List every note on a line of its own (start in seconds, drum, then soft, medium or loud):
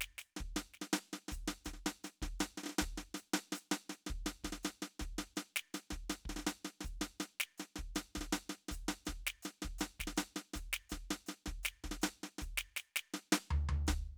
0.01 snare soft
0.18 snare soft
0.18 hi-hat pedal soft
0.37 kick soft
0.37 snare soft
0.56 snare medium
0.56 hi-hat pedal soft
0.74 snare soft
0.82 snare soft
0.93 snare medium
0.93 hi-hat pedal soft
1.13 snare soft
1.28 kick soft
1.28 snare soft
1.28 hi-hat pedal soft
1.48 snare medium
1.65 kick soft
1.65 snare soft
1.65 hi-hat pedal soft
1.74 snare soft
1.86 snare medium
2.04 snare soft
2.04 hi-hat pedal soft
2.22 kick soft
2.22 snare soft
2.40 snare medium
2.40 hi-hat pedal soft
2.58 snare soft
2.64 snare soft
2.66 snare soft
2.69 snare soft
2.78 kick soft
2.78 snare medium
2.78 hi-hat pedal soft
2.98 snare soft
3.14 snare soft
3.14 hi-hat pedal soft
3.34 snare medium
3.52 snare medium
3.52 hi-hat pedal soft
3.72 snare medium
3.90 snare soft
3.90 hi-hat pedal soft
4.07 kick soft
4.07 snare soft
4.26 snare medium
4.26 hi-hat pedal soft
4.44 kick soft
4.44 snare soft
4.52 snare soft
4.63 snare medium
4.63 hi-hat pedal soft
4.82 snare soft
5.00 kick soft
5.00 snare soft
5.00 hi-hat pedal soft
5.18 snare medium
5.36 snare medium
5.36 hi-hat pedal soft
5.56 snare medium
5.74 snare soft
5.74 hi-hat pedal soft
5.91 kick soft
5.91 snare soft
6.10 snare medium
6.10 hi-hat pedal soft
6.25 kick soft
6.25 snare soft
6.36 snare soft
6.39 snare soft
6.47 snare medium
6.47 hi-hat pedal soft
6.65 snare soft
6.81 kick soft
6.81 snare soft
6.81 hi-hat pedal soft
7.01 snare medium
7.20 snare medium
7.20 hi-hat pedal soft
7.40 snare medium
7.58 snare soft
7.58 hi-hat pedal soft
7.76 kick soft
7.76 snare soft
7.95 snare medium
7.95 hi-hat pedal soft
8.15 kick soft
8.15 snare soft
8.21 snare soft
8.33 snare medium
8.33 hi-hat pedal soft
8.50 snare soft
8.69 kick soft
8.69 snare soft
8.69 hi-hat pedal soft
8.88 snare medium
9.05 kick soft
9.05 snare soft
9.05 hi-hat pedal soft
9.27 snare medium
9.43 snare soft
9.43 hi-hat pedal soft
9.62 kick soft
9.62 snare soft
9.79 snare medium
9.79 hi-hat pedal soft
10.00 kick soft
10.00 snare soft
10.07 snare soft
10.17 snare medium
10.17 hi-hat pedal soft
10.36 snare soft
10.54 kick soft
10.54 snare soft
10.54 hi-hat pedal soft
10.73 snare medium
10.90 kick soft
10.90 snare soft
10.90 hi-hat pedal soft
11.11 snare medium
11.26 snare soft
11.26 hi-hat pedal soft
11.46 kick soft
11.46 snare soft
11.63 snare medium
11.63 hi-hat pedal soft
11.84 kick soft
11.84 snare soft
11.91 snare soft
12.02 snare medium
12.02 hi-hat pedal soft
12.23 snare soft
12.39 kick soft
12.39 snare soft
12.39 hi-hat pedal soft
12.58 snare medium
12.77 snare soft
12.77 hi-hat pedal soft
12.96 snare medium
13.14 snare soft
13.32 snare medium
13.51 floor tom medium
13.69 floor tom loud
13.87 kick soft
13.87 snare medium
13.87 hi-hat pedal soft